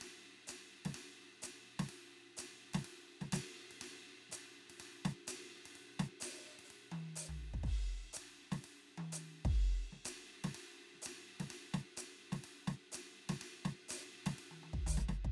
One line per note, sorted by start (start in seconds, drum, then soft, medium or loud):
0.01 ride medium
0.47 hi-hat pedal medium
0.47 ride loud
0.85 snare soft
0.85 ride medium
0.94 hi-hat pedal soft
0.94 ride medium
1.42 hi-hat pedal loud
1.42 ride medium
1.79 snare medium
1.79 ride medium
1.88 hi-hat pedal soft
1.88 ride medium
2.37 hi-hat pedal loud
2.37 ride loud
2.73 snare medium
2.73 ride medium
2.83 hi-hat pedal soft
2.83 ride medium
3.21 snare soft
3.32 snare medium
3.32 hi-hat pedal loud
3.32 ride loud
3.71 ride medium
3.81 ride loud
4.29 snare soft
4.29 hi-hat pedal loud
4.33 ride medium
4.70 ride medium
4.77 hi-hat pedal soft
4.77 ride medium
5.05 snare medium
5.27 hi-hat pedal loud
5.27 ride loud
5.65 ride medium
5.75 ride medium
5.99 snare medium
6.20 hi-hat pedal loud
6.20 ride loud
6.59 ride medium
6.64 hi-hat pedal soft
6.70 ride medium
6.91 high tom medium
7.16 hi-hat pedal loud
7.16 ride medium
7.29 floor tom medium
7.53 kick soft
7.63 kick soft
7.63 crash soft
7.63 ride medium
8.13 hi-hat pedal loud
8.13 ride medium
8.52 snare soft
8.52 ride medium
8.60 hi-hat pedal soft
8.60 ride medium
8.97 high tom medium
9.12 hi-hat pedal loud
9.12 ride medium
9.45 kick medium
9.45 ride medium
9.92 snare soft
10.05 hi-hat pedal loud
10.05 ride loud
10.44 snare soft
10.44 ride medium
10.52 hi-hat pedal soft
10.52 ride medium
10.94 snare soft
11.02 hi-hat pedal loud
11.06 ride loud
11.39 snare soft
11.39 ride medium
11.49 hi-hat pedal soft
11.49 ride medium
11.73 snare medium
11.97 hi-hat pedal loud
11.97 ride loud
12.32 snare soft
12.32 ride medium
12.42 hi-hat pedal soft
12.42 ride medium
12.67 snare medium
12.92 hi-hat pedal loud
12.92 ride loud
13.29 snare medium
13.29 ride medium
13.41 ride medium
13.65 snare medium
13.88 hi-hat pedal loud
13.88 ride loud
14.09 hi-hat pedal soft
14.26 snare medium
14.26 ride medium
14.38 ride medium
14.51 high tom soft
14.63 high tom soft
14.73 kick soft
14.86 floor tom medium
14.86 hi-hat pedal loud
14.97 snare soft
15.08 snare soft
15.24 kick soft